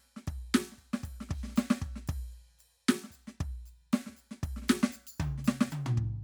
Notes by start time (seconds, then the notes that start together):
0.01 crash
0.17 snare
0.27 kick, crash
0.54 snare, crash
0.72 snare
0.78 kick, crash
0.93 snare
1.03 kick, crash, percussion
1.21 snare
1.29 kick, snare, crash
1.43 snare
1.48 snare
1.51 snare
1.56 snare, percussion
1.70 snare
1.82 kick, snare
1.96 snare
2.08 kick, crash
2.32 crash
2.59 crash, percussion
2.89 snare, crash
3.04 snare
3.08 kick, snare
3.12 percussion
3.27 snare
3.41 kick, crash
3.66 crash, percussion
3.93 snare, crash
4.06 kick, snare
4.12 snare
4.17 crash, percussion
4.31 snare
4.43 kick, crash
4.56 snare
4.62 snare
4.66 snare, percussion
4.70 snare
4.83 snare
4.89 kick, percussion
4.97 ride
5.07 percussion
5.20 kick, mid tom
5.38 snare
5.45 snare, percussion
5.61 snare
5.68 kick, percussion
5.72 mid tom
5.86 floor tom
5.97 kick